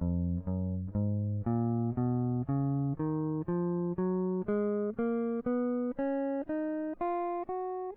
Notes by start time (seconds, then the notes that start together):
0.05 F2
0.51 F#2
0.97 G#2
1.48 A#2
1.99 B2
2.51 C#3
3.01 D#3
3.50 F3
4.00 F#3
4.49 G#3
5.00 A#3
5.47 B3
6.00 C#4
6.50 D#4
7.02 F4
7.50 F#4